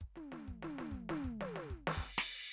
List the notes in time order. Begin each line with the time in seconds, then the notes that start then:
0.00 kick, hi-hat pedal
0.16 snare, floor tom
0.32 snare, floor tom
0.47 kick, hi-hat pedal
0.62 snare, floor tom
0.78 snare, floor tom
0.91 kick
1.09 snare, floor tom
1.24 kick
1.41 snare, high tom
1.56 snare, high tom
1.70 kick
1.87 snare, crash
1.97 kick
2.17 snare, crash